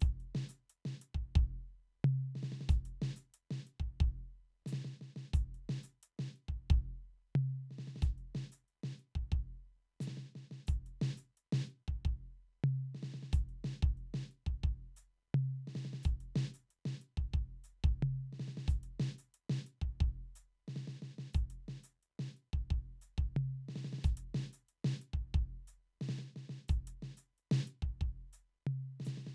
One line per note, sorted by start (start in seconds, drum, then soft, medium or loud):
0.01 kick medium
0.01 hi-hat pedal medium
0.21 closed hi-hat soft
0.36 snare medium
0.49 hi-hat pedal medium
0.70 closed hi-hat soft
0.86 snare soft
1.02 closed hi-hat soft
1.15 kick soft
1.36 kick medium
2.05 floor tom loud
2.36 snare soft
2.44 snare soft
2.53 snare soft
2.62 snare soft
2.70 kick medium
2.70 hi-hat pedal medium
2.86 closed hi-hat soft
3.03 snare medium
3.17 hi-hat pedal medium
3.34 closed hi-hat soft
3.51 snare medium
3.67 closed hi-hat soft
3.80 kick soft
4.01 kick medium
4.67 snare soft
4.67 hi-hat pedal medium
4.73 snare soft
4.85 snare soft
5.02 snare soft
5.17 snare soft
5.34 kick medium
5.34 hi-hat pedal medium
5.55 closed hi-hat soft
5.70 snare medium
5.84 hi-hat pedal medium
6.03 closed hi-hat soft
6.20 snare medium
6.36 closed hi-hat soft
6.49 kick soft
6.71 kick medium
7.36 floor tom loud
7.72 snare soft
7.79 snare soft
7.88 snare soft
7.97 snare soft
8.03 kick medium
8.03 hi-hat pedal medium
8.18 closed hi-hat soft
8.36 snare medium
8.53 hi-hat pedal medium
8.69 closed hi-hat soft
8.84 snare soft
9.00 closed hi-hat soft
9.16 kick soft
9.33 kick soft
10.01 snare soft
10.01 hi-hat pedal medium
10.08 snare soft
10.18 snare soft
10.36 snare soft
10.52 snare soft
10.68 kick soft
10.68 hi-hat pedal medium
10.87 closed hi-hat soft
11.02 snare medium
11.18 hi-hat pedal medium
11.38 closed hi-hat soft
11.53 snare medium
11.70 closed hi-hat soft
11.88 kick soft
12.06 kick soft
12.64 floor tom loud
12.95 snare soft
13.03 snare soft
13.14 snare soft
13.23 snare soft
13.33 kick medium
13.33 hi-hat pedal medium
13.49 closed hi-hat soft
13.65 snare medium
13.83 kick medium
13.98 closed hi-hat soft
14.15 snare medium
14.32 closed hi-hat soft
14.47 kick soft
14.64 kick soft
14.97 hi-hat pedal medium
15.35 floor tom loud
15.68 snare soft
15.76 snare soft
15.86 snare soft
15.94 snare soft
16.04 kick medium
16.04 hi-hat pedal medium
16.21 closed hi-hat soft
16.36 snare medium
16.54 hi-hat pedal medium
16.71 closed hi-hat soft
16.86 snare medium
17.02 closed hi-hat soft
17.18 kick soft
17.34 kick soft
17.64 hi-hat pedal medium
17.84 kick medium
18.03 floor tom loud
18.33 snare soft
18.40 snare soft
18.49 snare soft
18.58 snare soft
18.68 kick medium
18.68 hi-hat pedal medium
18.84 closed hi-hat soft
19.00 snare medium
19.19 hi-hat pedal medium
19.35 closed hi-hat soft
19.50 snare medium
19.67 closed hi-hat soft
19.82 kick soft
20.01 kick medium
20.36 hi-hat pedal medium
20.69 snare soft
20.77 snare soft
20.88 snare soft
21.03 snare soft
21.19 snare soft
21.34 kick medium
21.34 hi-hat pedal medium
21.51 closed hi-hat soft
21.69 snare soft
21.84 hi-hat pedal medium
22.03 open hi-hat soft
22.20 snare soft
22.37 closed hi-hat soft
22.54 kick soft
22.71 kick soft
23.02 hi-hat pedal medium
23.18 kick soft
23.37 floor tom loud
23.69 snare soft
23.76 snare soft
23.85 snare soft
23.93 snare soft
23.99 snare soft
24.04 kick medium
24.04 hi-hat pedal medium
24.18 closed hi-hat soft
24.35 snare medium
24.40 snare soft
24.53 hi-hat pedal medium
24.69 closed hi-hat soft
24.85 snare medium
25.02 closed hi-hat soft
25.14 kick soft
25.35 kick medium
25.68 hi-hat pedal medium
26.02 snare soft
26.09 snare medium
26.19 snare soft
26.37 snare soft
26.50 snare soft
26.69 kick medium
26.69 hi-hat pedal medium
26.88 open hi-hat soft
27.03 snare soft
27.18 hi-hat pedal medium
27.39 closed hi-hat soft
27.52 snare medium
27.68 closed hi-hat soft
27.83 kick soft
28.02 kick soft
28.33 hi-hat pedal medium
28.67 floor tom medium
29.01 snare soft
29.05 snare soft
29.05 hi-hat pedal medium
29.18 snare soft
29.27 snare soft